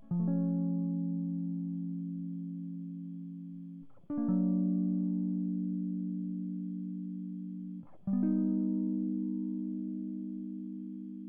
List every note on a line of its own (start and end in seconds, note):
0.11 3.84 F3
0.20 3.84 A3
0.27 3.86 C#4
4.10 7.87 D4
4.18 7.86 A#3
4.29 7.86 F#3
8.08 11.28 G3
8.13 11.28 B3
8.23 11.28 D#4